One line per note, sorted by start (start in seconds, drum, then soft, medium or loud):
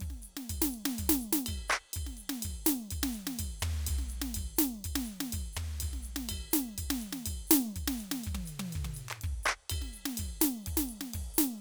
0.01 kick soft
0.01 ride medium
0.08 kick soft
0.08 snare soft
0.22 hi-hat pedal medium
0.22 ride soft
0.37 snare medium
0.50 kick soft
0.50 ride bell medium
0.56 kick soft
0.62 snare medium
0.70 hi-hat pedal medium
0.70 ride soft
0.86 snare medium
0.99 kick soft
0.99 ride bell medium
1.05 kick soft
1.09 snare loud
1.20 hi-hat pedal medium
1.20 ride soft
1.33 snare medium
1.46 kick soft
1.46 ride bell loud
1.55 kick soft
1.69 percussion loud
1.69 hi-hat pedal medium
1.94 kick soft
1.94 ride bell medium
2.03 kick soft
2.07 snare soft
2.17 hi-hat pedal medium
2.17 ride soft
2.30 snare medium
2.43 kick soft
2.43 ride bell loud
2.51 kick soft
2.65 snare loud
2.65 hi-hat pedal medium
2.91 kick soft
2.91 ride bell medium
2.98 kick soft
3.03 snare medium
3.13 hi-hat pedal medium
3.13 ride soft
3.27 snare medium
3.39 kick soft
3.39 ride bell medium
3.46 kick soft
3.60 floor tom loud
3.60 hi-hat pedal medium
3.87 kick soft
3.87 ride bell loud
3.95 kick soft
3.99 snare soft
4.09 hi-hat pedal medium
4.09 ride soft
4.22 snare medium
4.35 kick soft
4.35 ride bell medium
4.42 kick soft
4.57 snare loud
4.57 hi-hat pedal medium
4.85 kick soft
4.85 ride bell medium
4.91 kick soft
4.96 snare medium
5.05 hi-hat pedal medium
5.05 ride soft
5.21 snare medium
5.33 kick soft
5.33 ride bell medium
5.40 kick soft
5.53 floor tom loud
5.53 hi-hat pedal medium
5.80 kick soft
5.80 ride bell medium
5.89 kick soft
5.93 snare soft
6.03 hi-hat pedal medium
6.03 ride soft
6.16 snare medium
6.29 kick soft
6.29 ride bell loud
6.51 snare medium
6.51 hi-hat pedal medium
6.78 kick soft
6.78 ride bell medium
6.85 kick soft
6.91 snare medium
6.99 hi-hat pedal medium
6.99 ride soft
7.13 snare medium
7.26 kick soft
7.26 ride bell loud
7.33 kick soft
7.47 snare loud
7.47 hi-hat pedal medium
7.57 snare soft
7.76 kick soft
7.76 ride bell medium
7.82 kick soft
7.88 snare medium
7.97 hi-hat pedal medium
7.97 ride medium
8.12 snare medium
8.24 kick soft
8.24 ride bell medium
8.34 kick soft
8.34 high tom medium
8.46 hi-hat pedal medium
8.46 ride bell soft
8.60 closed hi-hat soft
8.60 high tom medium
8.73 kick soft
8.73 ride bell medium
8.82 kick soft
8.82 mid tom medium
8.94 hi-hat pedal medium
8.94 ride bell soft
9.09 percussion medium
9.22 kick soft
9.22 ride medium
9.31 kick soft
9.43 percussion loud
9.43 hi-hat pedal medium
9.70 kick soft
9.70 ride bell loud
9.79 kick soft
9.79 snare soft
9.93 hi-hat pedal medium
9.93 ride soft
10.06 snare medium
10.18 kick soft
10.18 ride bell medium
10.25 kick soft
10.41 snare loud
10.41 hi-hat pedal medium
10.61 hi-hat pedal soft
10.67 kick soft
10.67 ride loud
10.74 kick soft
10.74 snare medium
10.88 hi-hat pedal medium
10.88 ride soft
11.01 snare medium
11.14 kick soft
11.14 ride loud
11.21 kick soft
11.34 hi-hat pedal medium
11.39 snare loud
11.55 hi-hat pedal soft